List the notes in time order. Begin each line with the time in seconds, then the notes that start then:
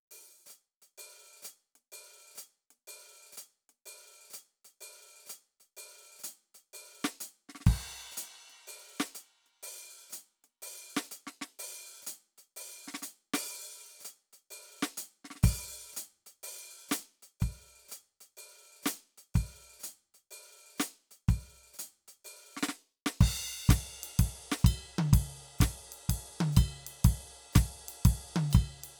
0.11 open hi-hat
0.46 closed hi-hat, hi-hat pedal
0.82 closed hi-hat
0.98 open hi-hat
1.42 closed hi-hat, hi-hat pedal
1.75 closed hi-hat
1.92 open hi-hat
2.35 closed hi-hat, hi-hat pedal
2.70 closed hi-hat
2.87 open hi-hat
3.32 hi-hat pedal
3.37 closed hi-hat
3.69 closed hi-hat
3.86 open hi-hat
4.30 closed hi-hat, hi-hat pedal
4.65 closed hi-hat
4.81 open hi-hat
5.26 closed hi-hat, hi-hat pedal
5.60 closed hi-hat
5.77 open hi-hat
6.19 hi-hat pedal
6.24 closed hi-hat
6.54 closed hi-hat
6.73 open hi-hat
7.04 snare, hi-hat pedal
7.20 closed hi-hat
7.49 snare
7.55 snare
7.60 snare
7.66 kick, snare, crash
8.11 hi-hat pedal
8.17 closed hi-hat
8.50 closed hi-hat
8.67 open hi-hat
9.00 snare
9.05 hi-hat pedal
9.15 closed hi-hat
9.46 closed hi-hat
9.63 open hi-hat
10.10 closed hi-hat, hi-hat pedal
10.44 closed hi-hat
10.62 open hi-hat
10.97 snare
11.03 hi-hat pedal
11.11 closed hi-hat
11.27 snare
11.41 snare
11.59 open hi-hat
12.02 hi-hat pedal
12.07 closed hi-hat
12.38 closed hi-hat
12.56 open hi-hat
12.88 snare
12.94 snare, hi-hat pedal
13.02 closed hi-hat, snare
13.34 open hi-hat, snare
14.00 hi-hat pedal
14.05 closed hi-hat
14.33 closed hi-hat
14.50 open hi-hat
14.82 snare, hi-hat pedal
14.97 closed hi-hat
15.24 snare
15.30 snare
15.35 snare
15.42 open hi-hat, kick, snare
15.93 closed hi-hat, hi-hat pedal
16.26 closed hi-hat
16.43 open hi-hat
16.89 closed hi-hat, snare, hi-hat pedal
17.22 closed hi-hat
17.40 open hi-hat, kick
17.88 closed hi-hat, hi-hat pedal
18.20 closed hi-hat
18.37 open hi-hat
18.83 closed hi-hat, snare, hi-hat pedal
19.18 closed hi-hat
19.34 open hi-hat, kick
19.80 closed hi-hat, hi-hat pedal
20.14 closed hi-hat
20.31 open hi-hat
20.78 closed hi-hat, snare, hi-hat pedal
21.11 closed hi-hat
21.28 open hi-hat, kick
21.74 hi-hat pedal
21.79 closed hi-hat
22.08 closed hi-hat
22.25 open hi-hat
22.57 snare
22.62 snare, hi-hat pedal
22.69 snare
23.06 snare
23.21 kick, crash
23.66 kick, snare, hi-hat pedal
23.71 ride
24.03 ride
24.19 kick, ride
24.52 snare
24.58 hi-hat pedal
24.64 kick, ride bell
24.98 high tom
25.13 kick, ride
25.58 kick, snare, hi-hat pedal, ride
25.92 ride
26.09 kick, ride
26.40 high tom
26.52 hi-hat pedal
26.57 kick, ride bell
26.87 ride
27.04 kick, ride
27.53 kick, snare, hi-hat pedal, ride
27.88 ride
28.05 kick, ride
28.36 high tom
28.50 hi-hat pedal, ride bell
28.55 kick
28.84 ride